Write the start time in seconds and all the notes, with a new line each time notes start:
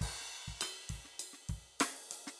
0.01 kick, hi-hat pedal, crash
0.12 kick
0.21 snare
0.48 kick
0.61 cross-stick, hi-hat pedal, ride bell
0.90 kick, ride
0.96 kick
1.05 snare
1.20 hi-hat pedal, ride bell
1.33 snare
1.42 snare
1.49 kick, ride
1.56 kick
1.80 snare, hi-hat pedal, ride
2.12 hi-hat pedal, ride
2.27 snare